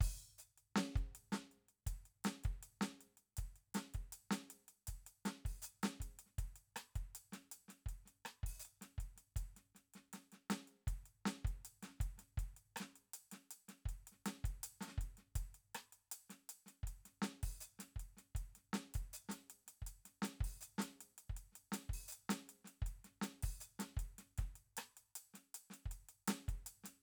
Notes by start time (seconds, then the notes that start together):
0.01 open hi-hat, kick
0.39 closed hi-hat, hi-hat pedal
0.58 closed hi-hat
0.76 snare, closed hi-hat
0.96 kick, closed hi-hat
1.15 closed hi-hat
1.33 snare, closed hi-hat
1.52 closed hi-hat
1.69 closed hi-hat
1.87 kick, closed hi-hat
2.06 closed hi-hat
2.25 snare, closed hi-hat
2.44 kick, closed hi-hat
2.63 closed hi-hat
2.81 snare, closed hi-hat
3.01 closed hi-hat
3.18 closed hi-hat
3.37 kick, closed hi-hat
3.56 closed hi-hat
3.75 snare, closed hi-hat
3.94 kick, closed hi-hat
4.13 closed hi-hat
4.31 snare, closed hi-hat
4.50 closed hi-hat
4.68 closed hi-hat
4.88 kick, closed hi-hat
5.07 closed hi-hat
5.26 snare, closed hi-hat
5.45 kick, open hi-hat
5.62 closed hi-hat, hi-hat pedal
5.83 snare, closed hi-hat
6.00 kick, closed hi-hat
6.19 closed hi-hat
6.26 snare
6.39 kick, closed hi-hat
6.56 closed hi-hat
6.76 cross-stick, closed hi-hat
6.96 kick, closed hi-hat
7.15 closed hi-hat
7.33 snare, closed hi-hat
7.52 closed hi-hat
7.69 snare, closed hi-hat
7.86 kick, closed hi-hat
8.06 snare, closed hi-hat
8.25 cross-stick, closed hi-hat
8.43 kick, open hi-hat
8.60 hi-hat pedal
8.65 closed hi-hat
8.82 snare, closed hi-hat
8.98 kick, closed hi-hat
9.17 snare, closed hi-hat
9.36 kick, closed hi-hat
9.57 snare, closed hi-hat
9.75 snare, closed hi-hat
9.94 snare, closed hi-hat
10.13 snare, closed hi-hat
10.32 snare, closed hi-hat
10.50 snare, closed hi-hat
10.68 closed hi-hat
10.88 kick, closed hi-hat
11.06 closed hi-hat
11.26 snare, closed hi-hat
11.45 kick, closed hi-hat
11.65 closed hi-hat
11.83 snare, closed hi-hat
11.86 snare
11.99 kick, snare, closed hi-hat
12.18 snare, closed hi-hat
12.38 kick, closed hi-hat
12.57 closed hi-hat
12.76 cross-stick, closed hi-hat
12.80 snare
12.96 closed hi-hat
13.14 closed hi-hat
13.32 snare, closed hi-hat
13.51 closed hi-hat
13.69 snare, closed hi-hat
13.86 kick, closed hi-hat
14.07 closed hi-hat
14.12 snare
14.26 snare, closed hi-hat
14.45 kick, closed hi-hat
14.64 closed hi-hat
14.81 snare, closed hi-hat
14.85 snare
14.88 snare
14.98 kick, closed hi-hat
15.17 snare, closed hi-hat
15.36 kick, closed hi-hat
15.55 closed hi-hat
15.75 cross-stick, closed hi-hat
15.93 closed hi-hat
16.12 closed hi-hat
16.30 snare, closed hi-hat
16.50 closed hi-hat
16.66 snare, closed hi-hat
16.83 kick
16.88 closed hi-hat
17.05 snare, closed hi-hat
17.22 snare, closed hi-hat
17.43 kick, open hi-hat
17.61 closed hi-hat, hi-hat pedal
17.79 snare, closed hi-hat
17.96 kick, closed hi-hat
18.17 snare, closed hi-hat
18.35 kick, closed hi-hat
18.55 snare, closed hi-hat
18.73 snare, closed hi-hat
18.94 kick, open hi-hat
19.13 hi-hat pedal
19.29 snare, closed hi-hat
19.50 closed hi-hat
19.67 snare, closed hi-hat
19.82 kick
19.87 closed hi-hat
20.05 snare, closed hi-hat
20.22 snare, closed hi-hat
20.41 kick, open hi-hat
20.61 closed hi-hat, hi-hat pedal
20.79 snare, closed hi-hat
21.01 closed hi-hat
21.18 closed hi-hat
21.30 kick
21.37 closed hi-hat
21.53 snare, closed hi-hat
21.72 snare, closed hi-hat
21.90 kick
21.94 open hi-hat
22.08 hi-hat pedal
22.13 closed hi-hat
22.30 snare, closed hi-hat
22.49 closed hi-hat
22.65 snare, closed hi-hat
22.82 kick
22.87 closed hi-hat
23.05 snare, closed hi-hat
23.22 snare, closed hi-hat
23.43 kick, open hi-hat
23.61 closed hi-hat, hi-hat pedal
23.80 snare, closed hi-hat
23.97 kick, closed hi-hat
24.19 snare, closed hi-hat
24.38 kick, snare, closed hi-hat
24.56 closed hi-hat
24.77 cross-stick, closed hi-hat
24.97 closed hi-hat
25.16 closed hi-hat
25.34 snare, closed hi-hat
25.55 closed hi-hat
25.70 snare, closed hi-hat
25.86 kick
25.92 closed hi-hat
26.09 closed hi-hat
26.28 snare, closed hi-hat
26.48 kick, closed hi-hat
26.67 closed hi-hat
26.84 snare, closed hi-hat